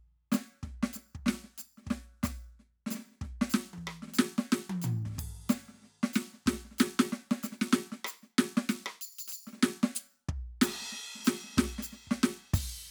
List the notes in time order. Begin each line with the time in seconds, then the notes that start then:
0.32 snare, percussion
0.35 snare
0.48 snare
0.54 snare
0.63 kick, snare
0.67 snare
0.83 snare
0.94 snare, percussion
1.15 kick
1.27 snare
1.29 snare
1.34 snare
1.44 snare
1.58 snare, percussion
1.78 snare
1.83 snare
1.86 kick, snare
1.89 snare
1.91 snare
2.24 kick, cross-stick, snare, percussion
2.60 snare
2.87 snare
2.91 snare, percussion
2.95 snare
2.99 snare
3.03 snare
3.07 snare
3.12 snare
3.17 snare
3.22 kick, snare
3.42 snare
3.50 percussion
3.54 snare
3.74 high tom
3.78 kick
3.88 high tom
4.03 snare
4.08 snare
4.12 snare, percussion
4.17 snare
4.19 snare
4.39 snare
4.53 snare
4.70 high tom
4.82 floor tom, percussion
5.06 kick, snare
5.10 snare
5.14 snare
5.16 snare
5.18 kick, snare, ride
5.50 snare, percussion
5.69 snare
5.74 snare
5.78 snare
5.82 snare
5.84 snare
6.04 snare
6.14 snare, percussion
6.34 snare
6.47 kick, snare
6.53 snare
6.65 snare
6.72 snare
6.76 snare, percussion
6.79 snare
7.00 snare
7.13 snare
7.32 snare
7.44 snare, percussion
7.53 snare
7.62 snare
7.73 snare
7.92 snare
8.05 high tom, percussion
8.23 snare
8.39 snare
8.58 snare
8.70 snare, percussion
8.87 high tom
9.02 percussion
9.19 percussion
9.28 percussion
9.33 percussion
9.47 snare
9.53 snare
9.58 snare
9.63 snare
9.84 snare
9.96 percussion, floor tom
10.29 kick
10.62 snare, percussion, ride
10.82 snare
10.93 snare
11.16 snare
11.20 snare
11.23 snare, percussion
11.26 snare
11.28 snare
11.44 snare
11.50 snare
11.53 snare
11.57 kick, snare
11.63 snare
11.79 snare
11.83 percussion
11.93 snare
12.08 kick
12.12 snare
12.24 snare
12.54 kick, snare, percussion, crash
12.76 crash